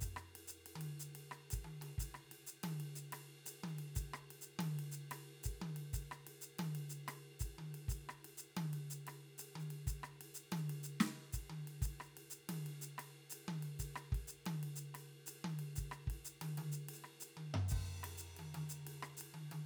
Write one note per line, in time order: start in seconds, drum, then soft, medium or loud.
0.01 kick soft
0.01 hi-hat pedal medium
0.01 ride medium
0.17 cross-stick medium
0.36 ride medium
0.48 hi-hat pedal medium
0.66 ride medium
0.76 high tom medium
0.81 ride medium
1.00 hi-hat pedal medium
1.15 ride medium
1.32 cross-stick medium
1.51 kick soft
1.51 hi-hat pedal medium
1.51 ride medium
1.65 high tom soft
1.82 high tom soft
1.82 ride medium
1.98 kick soft
1.98 hi-hat pedal medium
1.98 ride medium
2.15 cross-stick medium
2.32 ride medium
2.47 hi-hat pedal medium
2.64 high tom medium
2.64 ride medium
2.69 hi-hat pedal soft
2.80 ride soft
2.96 hi-hat pedal medium
3.13 cross-stick medium
3.13 ride medium
3.46 hi-hat pedal medium
3.46 ride medium
3.64 hi-hat pedal soft
3.64 high tom medium
3.79 ride soft
3.96 kick soft
3.96 hi-hat pedal medium
3.96 ride medium
4.14 cross-stick medium
4.31 ride medium
4.41 hi-hat pedal medium
4.59 high tom loud
4.59 ride medium
4.79 ride medium
4.92 hi-hat pedal medium
5.11 cross-stick medium
5.11 ride medium
5.44 kick soft
5.44 hi-hat pedal medium
5.44 ride medium
5.62 high tom medium
5.77 ride medium
5.94 kick soft
5.94 hi-hat pedal medium
5.94 ride medium
6.12 cross-stick medium
6.27 ride medium
6.41 hi-hat pedal medium
6.59 high tom medium
6.59 ride medium
6.64 hi-hat pedal soft
6.75 ride medium
6.90 hi-hat pedal medium
7.08 cross-stick medium
7.08 ride medium
7.40 kick soft
7.40 hi-hat pedal medium
7.40 ride medium
7.59 high tom medium
7.75 ride soft
7.89 kick soft
7.89 hi-hat pedal medium
7.89 ride soft
8.09 cross-stick medium
8.25 ride medium
8.38 hi-hat pedal medium
8.57 high tom medium
8.57 ride medium
8.74 ride soft
8.90 hi-hat pedal medium
9.07 cross-stick medium
9.07 ride medium
9.12 hi-hat pedal soft
9.38 hi-hat pedal medium
9.38 ride medium
9.56 high tom medium
9.60 hi-hat pedal soft
9.71 ride soft
9.87 kick soft
9.87 hi-hat pedal medium
9.87 ride soft
10.04 cross-stick medium
10.21 ride medium
10.35 hi-hat pedal medium
10.52 high tom loud
10.52 ride medium
10.57 hi-hat pedal soft
10.70 ride medium
10.84 hi-hat pedal medium
11.01 snare medium
11.01 ride medium
11.33 kick soft
11.33 hi-hat pedal medium
11.33 ride medium
11.50 high tom medium
11.68 ride soft
11.82 kick soft
11.82 hi-hat pedal medium
11.82 ride medium
12.00 cross-stick medium
12.00 hi-hat pedal soft
12.17 ride medium
12.30 hi-hat pedal medium
12.49 high tom medium
12.49 ride medium
12.66 ride soft
12.82 hi-hat pedal medium
12.98 cross-stick medium
12.98 ride medium
13.30 hi-hat pedal medium
13.30 ride medium
13.48 hi-hat pedal soft
13.48 high tom medium
13.63 ride soft
13.80 kick soft
13.80 hi-hat pedal medium
13.80 ride medium
13.96 cross-stick medium
14.12 kick soft
14.12 ride soft
14.28 hi-hat pedal medium
14.46 high tom medium
14.46 ride medium
14.63 ride medium
14.76 hi-hat pedal medium
14.95 cross-stick soft
14.95 hi-hat pedal soft
14.95 ride medium
15.26 hi-hat pedal medium
15.26 ride medium
15.45 hi-hat pedal soft
15.45 high tom medium
15.59 ride soft
15.76 kick soft
15.76 hi-hat pedal medium
15.76 ride medium
15.92 cross-stick medium
16.08 kick soft
16.08 ride medium
16.25 hi-hat pedal medium
16.42 high tom medium
16.42 ride medium
16.58 high tom medium
16.58 ride medium
16.72 hi-hat pedal medium
16.89 ride medium
16.94 hi-hat pedal soft
17.04 cross-stick soft
17.20 hi-hat pedal medium
17.20 ride soft
17.37 high tom medium
17.54 floor tom medium
17.69 kick soft
17.69 hi-hat pedal medium
17.69 crash soft
18.03 cross-stick medium
18.03 ride medium
18.18 hi-hat pedal medium
18.37 high tom medium
18.37 ride soft
18.55 high tom medium
18.55 ride soft
18.70 hi-hat pedal medium
18.87 hi-hat pedal soft
18.87 ride medium
19.03 cross-stick medium
19.17 hi-hat pedal medium
19.21 ride medium
19.34 high tom medium
19.52 high tom medium
19.52 ride soft